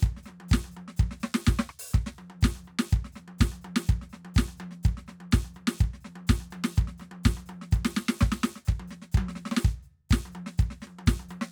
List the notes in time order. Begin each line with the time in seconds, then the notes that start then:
0.01 kick, hi-hat pedal
0.05 high tom
0.17 snare
0.23 snare, hi-hat pedal
0.29 high tom
0.41 high tom
0.49 kick, hi-hat pedal
0.54 snare
0.65 high tom
0.72 hi-hat pedal
0.77 high tom
0.88 snare
0.97 kick, hi-hat pedal
1.01 high tom
1.11 snare
1.21 snare, hi-hat pedal
1.35 snare
1.45 kick, snare, hi-hat pedal
1.59 snare
1.70 cross-stick
1.80 open hi-hat
1.92 kick, snare, hi-hat pedal
2.07 snare
2.15 hi-hat pedal, high tom
2.30 high tom
2.42 kick, snare, hi-hat pedal
2.56 high tom
2.64 hi-hat pedal, high tom
2.79 snare
2.90 kick, hi-hat pedal, high tom
3.05 snare
3.13 snare, hi-hat pedal
3.17 high tom
3.28 high tom
3.39 kick, snare, hi-hat pedal
3.52 high tom
3.62 hi-hat pedal, high tom
3.76 snare
3.87 kick, hi-hat pedal, high tom
4.02 snare
4.10 snare, hi-hat pedal
4.14 high tom
4.25 high tom
4.35 kick, snare, hi-hat pedal
4.49 high tom
4.57 hi-hat pedal, high tom
4.71 snare
4.84 kick, hi-hat pedal, high tom
4.98 snare
5.07 snare, hi-hat pedal, high tom
5.21 high tom
5.32 kick, snare, hi-hat pedal
5.45 high tom
5.54 hi-hat pedal, high tom
5.68 snare
5.79 kick, hi-hat pedal
5.83 high tom
5.94 snare
6.01 hi-hat pedal
6.05 snare, high tom
6.16 high tom
6.28 kick, snare, hi-hat pedal
6.41 high tom
6.51 hi-hat pedal, high tom
6.64 snare
6.76 kick, hi-hat pedal, high tom
6.88 snare
6.98 snare, hi-hat pedal, high tom
7.12 high tom
7.24 kick, snare, hi-hat pedal
7.37 high tom
7.46 hi-hat pedal, high tom
7.62 snare
7.72 kick, hi-hat pedal, high tom
7.85 snare
7.95 snare, hi-hat pedal
8.09 snare
8.19 snare, hi-hat pedal
8.23 kick
8.32 snare
8.42 snare, hi-hat pedal
8.56 snare
8.65 kick, snare, hi-hat pedal
8.80 high tom
8.88 snare, hi-hat pedal
9.02 snare
9.12 kick, hi-hat pedal
9.18 high tom
9.29 snare
9.36 snare
9.46 snare
9.52 snare
9.57 snare
9.61 kick, hi-hat pedal
9.83 hi-hat pedal
10.10 kick, snare, hi-hat pedal
10.26 high tom
10.32 hi-hat pedal, high tom
10.47 snare
10.58 kick, hi-hat pedal, high tom
10.71 snare
10.80 snare, hi-hat pedal
10.88 high tom
10.99 high tom
11.07 kick, snare, hi-hat pedal
11.20 high tom
11.29 hi-hat pedal, high tom
11.42 snare